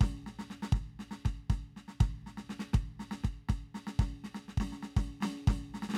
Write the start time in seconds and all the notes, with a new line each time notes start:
0.01 kick, snare
0.27 snare
0.39 snare
0.50 snare
0.63 snare
0.72 kick, snare
0.99 snare
1.11 snare
1.25 kick, snare
1.50 kick, snare
1.77 snare
1.88 snare
2.01 kick, snare
2.26 snare
2.38 snare
2.50 snare
2.74 kick, snare
3.00 snare
3.11 snare
3.24 kick, snare
3.49 kick, snare
3.75 snare
3.87 snare
3.99 kick, snare
4.24 snare
4.35 snare
4.48 snare
4.58 kick, snare
4.72 snare
4.83 snare
4.97 kick, snare
5.21 snare
5.23 snare
5.48 kick, snare
5.74 snare
5.83 snare
5.89 snare
5.94 snare